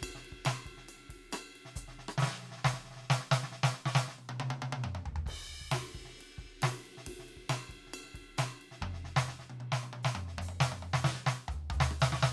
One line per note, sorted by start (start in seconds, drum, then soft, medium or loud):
0.03 kick soft
0.03 hi-hat pedal soft
0.03 ride bell loud
0.09 kick soft
0.15 snare soft
0.25 ride soft
0.32 kick soft
0.38 kick soft
0.46 snare loud
0.46 hi-hat pedal medium
0.46 ride bell loud
0.66 kick soft
0.66 ride soft
0.72 kick soft
0.78 snare soft
0.88 hi-hat pedal medium
0.88 ride bell medium
0.97 snare soft
1.01 snare soft
1.04 snare soft
1.10 kick soft
1.10 ride medium
1.32 cross-stick medium
1.32 hi-hat pedal medium
1.32 ride bell loud
1.56 ride medium
1.66 snare soft
1.76 kick medium
1.76 hi-hat pedal loud
1.76 ride bell medium
1.83 kick soft
1.88 snare soft
1.99 snare soft
2.09 cross-stick medium
2.18 snare loud
2.23 snare loud
2.28 snare medium
2.34 snare medium
2.39 snare soft
2.43 snare soft
2.49 snare soft
2.52 snare medium
2.57 snare soft
2.65 kick soft
2.65 snare loud
2.74 snare medium
2.79 snare soft
2.85 snare soft
2.91 snare soft
2.97 snare soft
3.03 snare soft
3.07 kick soft
3.07 snare soft
3.11 snare loud
3.21 snare soft
3.32 snare loud
3.43 snare medium
3.52 snare medium
3.64 snare loud
3.74 snare soft
3.86 snare loud
3.95 snare loud
4.08 snare medium
4.19 high tom medium
4.30 high tom loud
4.40 high tom loud
4.51 high tom loud
4.62 high tom loud
4.73 high tom loud
4.84 mid tom loud
4.95 mid tom medium
5.06 floor tom loud
5.16 floor tom loud
5.27 kick medium
5.27 hi-hat pedal soft
5.27 crash loud
5.27 floor tom soft
5.40 kick soft
5.62 kick soft
5.67 kick soft
5.72 snare loud
5.72 hi-hat pedal medium
5.72 ride loud
5.95 kick soft
5.95 ride soft
6.01 kick soft
6.05 snare soft
6.18 hi-hat pedal soft
6.18 ride medium
6.39 kick soft
6.45 kick soft
6.63 snare loud
6.63 hi-hat pedal soft
6.63 ride loud
6.86 ride soft
6.98 snare soft
7.07 kick soft
7.07 hi-hat pedal soft
7.07 ride loud
7.20 snare soft
7.29 ride soft
7.37 kick soft
7.50 snare medium
7.50 hi-hat pedal soft
7.50 ride bell loud
7.70 kick soft
7.70 ride medium
7.75 kick soft
7.87 snare soft
7.94 hi-hat pedal medium
7.94 ride bell loud
8.04 snare soft
8.10 snare soft
8.15 kick soft
8.15 ride medium
8.20 kick soft
8.38 snare loud
8.38 hi-hat pedal loud
8.38 ride bell loud
8.47 snare soft
8.62 ride soft
8.72 snare soft
8.82 kick medium
8.82 mid tom loud
8.89 kick soft
8.94 snare soft
9.05 snare soft
9.17 snare loud
9.25 snare medium
9.25 hi-hat pedal soft
9.40 snare soft
9.50 high tom medium
9.61 high tom medium
9.72 snare loud
9.77 hi-hat pedal soft
9.83 high tom medium
9.93 high tom medium
10.03 snare loud
10.03 hi-hat pedal medium
10.16 mid tom loud
10.28 snare soft
10.38 kick soft
10.38 hi-hat pedal medium
10.38 mid tom loud
10.61 snare loud
10.72 mid tom medium
10.83 mid tom medium
10.90 hi-hat pedal soft
10.94 snare loud
11.05 snare loud
11.10 hi-hat pedal soft
11.16 snare soft
11.27 snare loud
11.27 hi-hat pedal soft
11.49 hi-hat pedal medium
11.49 floor tom loud
11.70 hi-hat pedal medium
11.70 floor tom loud
11.81 snare loud
11.91 cross-stick medium
12.00 snare loud
12.00 hi-hat pedal medium
12.13 snare loud
12.23 snare loud